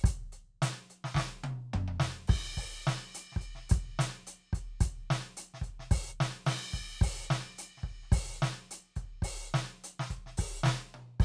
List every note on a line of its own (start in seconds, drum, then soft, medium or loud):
0.01 kick loud
0.01 hi-hat pedal medium
0.06 closed hi-hat loud
0.33 closed hi-hat medium
0.62 closed hi-hat loud
0.62 snare loud
0.90 closed hi-hat medium
1.05 snare medium
1.15 kick medium
1.15 snare medium
1.17 snare loud
1.44 high tom loud
1.74 kick medium
1.74 mid tom loud
1.88 mid tom soft
1.88 high tom medium
2.00 snare loud
2.28 kick loud
2.28 crash loud
2.58 open hi-hat medium
2.58 kick medium
2.83 snare loud
2.83 hi-hat pedal medium
3.15 closed hi-hat loud
3.32 snare soft
3.37 kick medium
3.42 closed hi-hat medium
3.56 snare soft
3.70 closed hi-hat loud
3.70 kick loud
3.99 closed hi-hat loud
3.99 snare loud
4.27 closed hi-hat loud
4.53 closed hi-hat medium
4.53 kick medium
4.81 closed hi-hat loud
4.81 kick loud
5.11 snare loud
5.37 closed hi-hat loud
5.54 snare medium
5.62 closed hi-hat medium
5.62 kick medium
5.80 snare soft
5.91 open hi-hat loud
5.91 kick loud
6.10 hi-hat pedal medium
6.21 snare loud
6.47 snare loud
6.47 hi-hat pedal soft
6.47 crash loud
6.74 closed hi-hat medium
6.74 kick medium
7.02 open hi-hat loud
7.02 kick loud
7.26 hi-hat pedal medium
7.31 snare loud
7.59 closed hi-hat loud
7.78 snare soft
7.84 kick medium
7.84 closed hi-hat soft
8.03 snare soft
8.12 open hi-hat loud
8.12 kick loud
8.36 hi-hat pedal soft
8.43 snare loud
8.71 closed hi-hat loud
8.96 closed hi-hat soft
8.96 kick medium
9.23 open hi-hat loud
9.23 kick medium
9.47 hi-hat pedal soft
9.54 snare loud
9.84 closed hi-hat loud
10.00 snare medium
10.11 closed hi-hat medium
10.11 kick medium
10.27 snare soft
10.38 open hi-hat loud
10.38 kick loud
10.59 hi-hat pedal soft
10.64 snare loud
10.66 snare loud
10.95 high tom medium
11.20 kick loud
11.20 crash loud